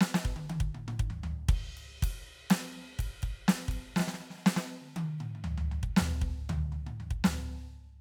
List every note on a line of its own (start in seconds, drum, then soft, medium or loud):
0.02 snare loud
0.14 snare loud
0.25 kick medium
0.36 high tom medium
0.49 high tom loud
0.60 kick medium
0.74 mid tom medium
0.88 mid tom loud
0.99 kick medium
1.10 floor tom medium
1.23 floor tom loud
1.49 kick loud
1.49 ride medium
1.77 ride medium
2.02 kick medium
2.02 ride loud
2.50 snare loud
2.50 ride loud
2.99 kick medium
2.99 ride medium
3.22 kick medium
3.22 ride medium
3.48 snare loud
3.48 ride loud
3.68 kick medium
3.68 ride medium
3.93 kick soft
3.93 snare loud
3.93 hi-hat pedal soft
3.99 snare medium
4.08 snare medium
4.14 snare medium
4.20 snare soft
4.30 snare soft
4.34 snare soft
4.37 snare soft
4.45 snare loud
4.45 hi-hat pedal soft
4.56 snare loud
4.82 high tom soft
4.96 high tom loud
5.10 high tom soft
5.18 hi-hat pedal soft
5.18 mid tom medium
5.35 mid tom soft
5.44 floor tom loud
5.58 floor tom medium
5.71 floor tom medium
5.83 kick medium
5.96 snare loud
5.96 floor tom loud
6.21 kick medium
6.21 floor tom soft
6.49 floor tom loud
6.49 high tom loud
6.72 floor tom medium
6.86 mid tom medium
7.00 floor tom medium
7.11 kick medium
7.24 snare loud
7.24 floor tom loud